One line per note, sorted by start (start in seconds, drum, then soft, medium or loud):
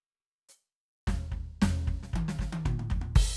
0.49 hi-hat pedal medium
1.07 kick medium
1.07 snare medium
1.07 floor tom medium
1.32 kick medium
1.32 floor tom soft
1.62 kick medium
1.62 snare loud
1.62 floor tom loud
1.87 kick medium
1.87 floor tom medium
2.03 snare soft
2.13 kick medium
2.13 high tom loud
2.28 snare medium
2.39 kick medium
2.39 snare medium
2.53 high tom loud
2.66 kick medium
2.66 mid tom loud
2.79 mid tom medium
2.90 kick medium
2.90 floor tom medium
3.02 mid tom medium
3.16 kick loud
3.16 crash loud